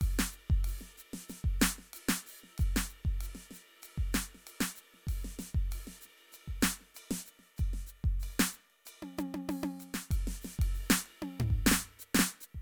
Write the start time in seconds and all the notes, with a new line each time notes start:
0.01 kick, hi-hat pedal, ride
0.19 snare
0.31 hi-hat pedal
0.50 kick
0.64 hi-hat pedal, ride
0.81 snare
0.96 hi-hat pedal, ride
1.13 snare, ride
1.28 snare, hi-hat pedal, ride
1.44 kick
1.60 snare, hi-hat pedal
1.78 snare
1.93 hi-hat pedal, ride
2.09 snare
2.25 hi-hat pedal, ride
2.41 snare, ride
2.58 kick, hi-hat pedal, ride
2.76 snare
2.88 hi-hat pedal
3.05 kick
3.21 hi-hat pedal, ride
3.35 snare
3.51 snare, hi-hat pedal, ride
3.68 ride
3.82 hi-hat pedal, ride
3.98 kick
4.12 snare, hi-hat pedal, ride
4.35 snare
4.46 hi-hat pedal, ride
4.61 snare
4.75 hi-hat pedal
4.94 snare
5.07 kick, hi-hat pedal, ride
5.24 snare
5.39 snare, hi-hat pedal, ride
5.55 kick
5.71 hi-hat pedal, ride
5.87 snare
6.01 snare, hi-hat pedal, ride
6.18 ride
6.32 hi-hat pedal, ride bell
6.48 kick
6.61 snare, hi-hat pedal
6.79 snare, ride
6.94 hi-hat pedal, ride bell
7.11 snare
7.25 hi-hat pedal, ride
7.39 snare
7.44 ride
7.57 kick, hi-hat pedal, ride bell
7.73 snare
7.86 hi-hat pedal, ride
8.04 kick, ride
8.20 hi-hat pedal, ride bell
8.39 snare
8.51 hi-hat pedal
8.70 ride
8.85 hi-hat pedal, ride bell
9.02 open hi-hat, high tom
9.18 hi-hat pedal, high tom
9.34 high tom
9.49 hi-hat pedal, high tom
9.63 high tom
9.79 hi-hat pedal, ride
9.94 snare
10.11 kick, hi-hat pedal, ride
10.27 snare
10.41 snare, hi-hat pedal
10.59 kick, ride
10.74 hi-hat pedal, ride
10.90 snare
11.06 ride
11.22 high tom
11.40 floor tom
11.50 kick
11.66 snare
11.71 snare
11.99 hi-hat pedal
12.15 snare
12.19 snare
12.41 hi-hat pedal
12.55 kick